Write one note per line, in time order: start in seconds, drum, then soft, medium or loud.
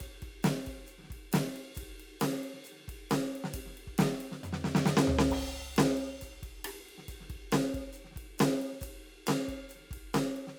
0.01 kick soft
0.01 hi-hat pedal soft
0.01 ride medium
0.07 kick soft
0.23 kick soft
0.23 ride soft
0.29 kick soft
0.43 snare loud
0.43 hi-hat pedal soft
0.43 ride loud
0.67 kick soft
0.67 ride medium
0.73 kick soft
0.78 snare soft
0.87 hi-hat pedal soft
0.87 ride soft
0.99 snare soft
1.04 snare soft
1.11 kick soft
1.11 ride medium
1.16 kick soft
1.32 snare loud
1.32 hi-hat pedal medium
1.32 ride loud
1.57 ride medium
1.70 snare soft
1.75 kick soft
1.75 hi-hat pedal medium
1.75 ride medium
1.82 kick soft
1.82 snare soft
1.92 snare soft
2.00 ride medium
2.20 snare medium
2.20 hi-hat pedal medium
2.20 ride loud
2.32 snare soft
2.44 ride soft
2.54 snare soft
2.65 hi-hat pedal medium
2.65 ride medium
2.72 snare soft
2.77 snare soft
2.80 snare soft
2.83 snare soft
2.87 kick soft
2.87 snare soft
2.87 ride medium
2.94 kick soft
3.10 snare loud
3.10 hi-hat pedal medium
3.10 ride loud
3.36 ride medium
3.44 snare medium
3.54 kick soft
3.54 hi-hat pedal medium
3.54 ride loud
3.67 snare soft
3.72 snare soft
3.78 ride medium
3.88 kick soft
3.99 snare loud
3.99 hi-hat pedal medium
3.99 ride loud
4.07 snare soft
4.21 ride medium
4.32 snare soft
4.44 hi-hat pedal medium
4.44 mid tom medium
4.53 snare medium
4.65 snare medium
4.75 snare loud
4.86 snare loud
4.86 hi-hat pedal medium
4.98 snare loud
5.08 floor tom loud
5.19 snare loud
5.30 kick soft
5.30 hi-hat pedal soft
5.30 crash loud
5.38 kick soft
5.41 kick soft
5.48 snare soft
5.77 snare loud
5.77 hi-hat pedal medium
5.77 ride medium
5.86 snare soft
5.98 ride soft
6.08 snare soft
6.15 snare soft
6.22 kick soft
6.22 hi-hat pedal medium
6.22 ride medium
6.28 snare soft
6.43 kick soft
6.43 ride medium
6.65 cross-stick medium
6.65 hi-hat pedal soft
6.65 ride loud
6.89 ride soft
6.98 snare soft
7.09 kick soft
7.09 hi-hat pedal soft
7.09 ride medium
7.21 snare soft
7.30 kick soft
7.30 ride medium
7.36 kick soft
7.52 snare loud
7.52 hi-hat pedal medium
7.52 ride loud
7.75 kick soft
7.75 ride medium
7.81 kick soft
7.93 hi-hat pedal medium
7.93 ride soft
8.05 snare soft
8.12 snare soft
8.16 kick soft
8.16 ride medium
8.22 kick soft
8.39 snare loud
8.39 hi-hat pedal medium
8.39 ride loud
8.62 ride soft
8.72 snare soft
8.81 kick soft
8.81 snare soft
8.81 hi-hat pedal medium
8.81 ride medium
9.06 ride soft
9.27 snare loud
9.27 hi-hat pedal medium
9.27 ride bell loud
9.49 kick soft
9.49 ride medium
9.69 hi-hat pedal soft
9.69 ride medium
9.76 snare soft
9.80 snare soft
9.83 snare soft
9.87 kick soft
9.87 snare soft
9.94 kick soft
9.94 ride medium
10.14 snare loud
10.14 hi-hat pedal medium
10.14 ride medium
10.37 ride soft
10.48 snare soft